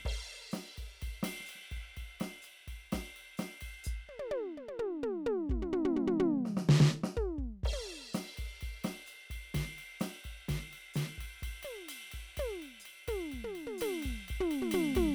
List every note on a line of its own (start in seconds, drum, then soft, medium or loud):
0.01 snare soft
0.01 hi-hat pedal soft
0.05 kick soft
0.05 snare soft
0.05 crash medium
0.12 kick soft
0.52 snare soft
0.52 hi-hat pedal medium
0.52 ride medium
0.78 kick soft
0.78 ride soft
0.84 kick soft
1.00 kick soft
1.00 hi-hat pedal soft
1.00 ride medium
1.08 kick soft
1.24 snare medium
1.24 ride bell medium
1.41 snare soft
1.47 hi-hat pedal medium
1.47 ride medium
1.56 snare soft
1.72 kick soft
1.72 ride soft
1.77 kick soft
1.94 kick soft
1.94 hi-hat pedal soft
1.94 ride soft
2.03 kick soft
2.21 snare medium
2.21 ride bell medium
2.43 hi-hat pedal medium
2.43 ride soft
2.68 kick soft
2.68 ride soft
2.73 kick soft
2.92 kick soft
2.92 snare medium
2.92 hi-hat pedal soft
2.92 ride medium
2.99 kick soft
3.17 ride soft
3.38 snare medium
3.38 hi-hat pedal medium
3.38 ride medium
3.62 kick soft
3.62 ride medium
3.85 kick soft
3.85 hi-hat pedal loud
4.09 high tom soft
4.20 high tom medium
4.32 high tom loud
4.58 high tom soft
4.69 high tom medium
4.80 mid tom loud
5.04 mid tom loud
5.27 mid tom loud
5.50 kick soft
5.50 floor tom medium
5.56 kick soft
5.62 floor tom medium
5.73 floor tom loud
5.85 floor tom loud
5.97 floor tom medium
6.08 floor tom loud
6.20 floor tom loud
6.46 snare soft
6.58 snare medium
6.70 snare loud
6.81 snare loud
7.04 snare medium
7.17 kick soft
7.17 mid tom loud
7.39 kick soft
7.44 kick soft
7.64 kick soft
7.64 crash medium
7.71 kick soft
7.71 high tom medium
8.15 snare medium
8.15 hi-hat pedal medium
8.15 ride medium
8.38 kick soft
8.38 ride soft
8.45 kick soft
8.62 kick soft
8.62 ride soft
8.85 snare medium
8.85 ride medium
9.07 hi-hat pedal medium
9.07 ride soft
9.31 kick soft
9.31 ride medium
9.36 kick soft
9.54 kick soft
9.54 snare medium
9.54 hi-hat pedal soft
9.54 ride medium
9.61 kick soft
9.79 ride soft
10.01 snare medium
10.01 hi-hat pedal medium
10.01 ride medium
10.25 kick soft
10.25 ride soft
10.49 kick soft
10.49 snare medium
10.49 hi-hat pedal soft
10.49 ride medium
10.74 ride soft
10.95 snare medium
10.95 hi-hat pedal medium
10.95 ride medium
11.19 kick soft
11.19 ride medium
11.24 kick soft
11.40 kick soft
11.40 hi-hat pedal soft
11.40 ride medium
11.48 kick soft
11.64 high tom medium
11.64 ride medium
11.89 hi-hat pedal medium
11.89 ride medium
12.12 kick soft
12.12 ride medium
12.38 kick soft
12.38 high tom medium
12.38 ride medium
12.43 kick soft
12.63 ride soft
12.81 hi-hat pedal medium
12.86 ride medium
13.09 kick soft
13.09 mid tom medium
13.09 ride medium
13.14 kick soft
13.28 hi-hat pedal soft
13.32 kick soft
13.32 ride soft
13.39 kick soft
13.45 mid tom medium
13.56 ride soft
13.67 mid tom medium
13.79 hi-hat pedal medium
13.79 mid tom loud
13.79 ride medium
14.03 kick soft
14.03 ride medium
14.11 kick soft
14.24 hi-hat pedal soft
14.29 kick soft
14.29 ride medium
14.36 kick soft
14.41 floor tom loud
14.52 ride medium
14.62 floor tom medium
14.72 hi-hat pedal medium
14.72 ride loud
14.72 floor tom loud
14.96 kick soft
14.96 floor tom loud
14.96 ride medium